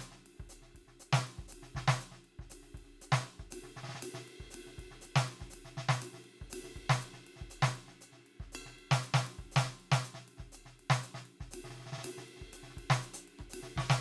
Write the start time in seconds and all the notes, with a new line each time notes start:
0.01 hi-hat pedal, ride bell
0.12 snare
0.20 snare
0.27 ride
0.37 kick, snare
0.42 snare
0.50 hi-hat pedal, ride bell
0.63 snare
0.68 snare
0.75 kick, ride
0.88 snare
1.00 hi-hat pedal, ride
1.13 snare
1.18 cross-stick
1.23 hi-hat pedal
1.28 ride
1.38 kick, snare
1.49 hi-hat pedal
1.53 ride
1.63 snare
1.76 kick, snare
1.88 snare
1.95 snare
2.01 hi-hat pedal, ride bell
2.12 snare
2.25 ride
2.40 kick, snare
2.51 hi-hat pedal, ride
2.63 snare
2.75 kick, ride
2.85 snare
3.02 hi-hat pedal, ride
3.13 snare
3.20 snare
3.39 kick, snare
3.51 hi-hat pedal, ride
3.64 snare
3.77 snare
3.84 snare
3.89 snare
3.96 snare
4.03 hi-hat pedal, ride
4.15 snare
4.29 ride
4.41 kick, snare
4.51 hi-hat pedal, ride
4.67 snare
4.79 kick, ride
4.92 snare
5.02 hi-hat pedal
5.06 ride
5.16 snare
5.24 hi-hat pedal
5.29 ride
5.41 kick, snare
5.51 hi-hat pedal, ride
5.66 snare
5.78 snare
5.89 snare
5.96 snare
6.02 hi-hat pedal, ride
6.14 snare
6.23 snare, ride
6.36 snare
6.40 kick, snare
6.51 hi-hat pedal, ride
6.64 snare
6.76 kick, ride
6.90 snare
6.96 cross-stick
7.01 hi-hat pedal, ride
7.14 snare
7.27 ride
7.37 snare
7.42 kick
7.51 hi-hat pedal, ride bell
7.63 snare
7.68 cross-stick
7.74 hi-hat pedal, ride
7.88 snare
8.02 hi-hat pedal, ride bell
8.13 snare
8.20 snare
8.27 ride
8.41 kick, snare
8.53 hi-hat pedal, ride bell
8.66 snare
8.76 hi-hat pedal, ride
8.92 snare
8.98 cross-stick
9.03 hi-hat pedal, ride
9.15 snare
9.25 hi-hat pedal, ride
9.39 kick
9.52 hi-hat pedal
9.57 snare, ride bell
9.63 snare
9.74 hi-hat pedal
9.81 ride
9.92 snare
10.04 hi-hat pedal, ride bell
10.15 snare
10.29 ride
10.38 kick, snare
10.53 hi-hat pedal, ride bell
10.66 snare
10.80 ride
10.91 snare
11.03 hi-hat pedal, ride
11.15 snare
11.24 hi-hat pedal, ride
11.41 kick, snare
11.52 hi-hat pedal, ride
11.65 snare
11.71 snare
11.75 snare
11.80 snare
11.87 snare
11.93 snare
11.99 snare
12.04 snare, hi-hat pedal, ride
12.18 snare
12.26 hi-hat pedal, ride
12.37 snare
12.42 kick, snare
12.53 hi-hat pedal, ride
12.64 snare
12.71 snare
12.78 kick, ride
12.91 snare
13.02 hi-hat pedal, ride
13.14 closed hi-hat
13.28 ride
13.39 kick, cross-stick
13.50 hi-hat pedal, ride
13.63 snare
13.73 hi-hat pedal
13.77 kick, snare
13.91 snare